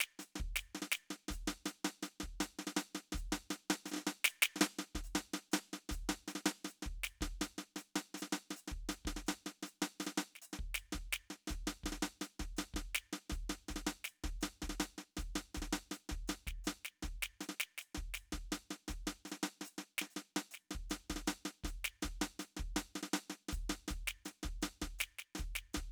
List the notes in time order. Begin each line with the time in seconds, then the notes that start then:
0.01 snare
0.20 snare, hi-hat pedal
0.36 snare
0.41 kick
0.57 snare, hi-hat pedal
0.75 snare
0.83 snare
0.92 snare, hi-hat pedal
1.11 snare
1.29 kick, snare, hi-hat pedal
1.36 kick
1.48 snare
1.66 snare, hi-hat pedal
1.85 snare
2.03 snare, hi-hat pedal
2.21 kick, snare
2.41 snare, hi-hat pedal
2.59 snare
2.68 snare
2.77 snare, hi-hat pedal
2.95 snare
3.13 kick, snare
3.17 hi-hat pedal
3.33 snare
3.51 snare, hi-hat pedal
3.71 snare
3.86 snare, hi-hat pedal
3.92 snare
3.94 snare
3.97 snare
3.99 snare
4.07 snare
4.25 snare, hi-hat pedal
4.43 snare
4.57 snare
4.62 snare
4.79 snare
4.96 kick, snare
5.05 hi-hat pedal
5.16 snare
5.34 snare
5.52 snare, hi-hat pedal
5.74 snare
5.90 kick, snare, hi-hat pedal
6.10 snare
6.28 snare, hi-hat pedal
6.36 snare
6.46 snare
6.65 snare, hi-hat pedal
6.83 kick, snare
7.04 snare, hi-hat pedal
7.22 kick, snare
7.42 snare, hi-hat pedal
7.59 snare
7.77 snare, hi-hat pedal
7.96 snare
8.15 snare, hi-hat pedal
8.23 snare
8.33 snare
8.51 snare
8.57 hi-hat pedal
8.68 kick, snare
8.90 snare, hi-hat pedal
9.06 kick, snare
9.17 snare
9.27 snare, hi-hat pedal
9.47 snare
9.63 snare, hi-hat pedal
9.83 snare
10.01 snare, hi-hat pedal
10.07 snare
10.18 snare
10.36 snare
10.42 hi-hat pedal
10.54 snare
10.60 kick
10.75 snare, hi-hat pedal
10.93 kick, snare
11.13 snare, hi-hat pedal
11.31 snare
11.48 snare, hi-hat pedal
11.50 kick, snare
11.68 snare
11.84 kick, snare
11.93 snare
12.03 snare
12.22 snare, hi-hat pedal
12.40 kick, snare
12.57 snare, hi-hat pedal
12.75 kick, snare
12.95 snare, hi-hat pedal
13.14 snare
13.30 kick, snare, hi-hat pedal
13.50 snare
13.69 kick, snare, hi-hat pedal
13.77 snare
13.87 snare
14.05 snare, hi-hat pedal
14.24 kick, snare
14.42 snare, hi-hat pedal
14.63 kick, snare
14.68 kick, snare
14.81 snare, hi-hat pedal
14.99 snare
15.17 kick, snare, hi-hat pedal
15.36 snare
15.55 kick, snare, hi-hat pedal
15.63 snare
15.73 snare
15.92 snare, hi-hat pedal
16.10 kick, snare
16.28 snare, hi-hat pedal
16.48 kick, snare
16.65 snare, hi-hat pedal
16.86 snare
17.03 kick, snare, hi-hat pedal
17.23 snare
17.41 snare, hi-hat pedal
17.50 snare
17.61 snare
17.79 snare, hi-hat pedal
17.95 kick, snare
18.15 snare, hi-hat pedal
18.33 kick, snare
18.53 snare, hi-hat pedal
18.71 snare
18.89 kick, snare, hi-hat pedal
19.08 snare
19.26 snare, hi-hat pedal
19.32 snare
19.44 snare
19.62 snare, hi-hat pedal
19.79 snare
19.99 snare
20.02 snare
20.11 hi-hat pedal
20.17 snare
20.37 snare
20.52 snare, hi-hat pedal
20.72 snare
20.76 kick
20.91 snare, hi-hat pedal
21.10 kick, snare
21.17 snare
21.28 snare, hi-hat pedal
21.46 snare
21.64 kick, snare, hi-hat pedal
21.85 snare
22.03 kick, snare, hi-hat pedal
22.22 snare
22.40 snare, hi-hat pedal
22.57 kick, snare
22.77 snare, hi-hat pedal
22.96 snare
23.04 snare
23.14 snare, hi-hat pedal
23.30 snare
23.49 snare, hi-hat pedal
23.53 kick
23.70 snare
23.89 kick, snare, hi-hat pedal
24.08 snare
24.26 snare, hi-hat pedal
24.44 kick, snare
24.63 snare, hi-hat pedal
24.82 kick, snare
25.00 snare, hi-hat pedal
25.19 snare
25.36 snare, hi-hat pedal
25.39 kick, snare
25.56 snare
25.74 kick, snare, hi-hat pedal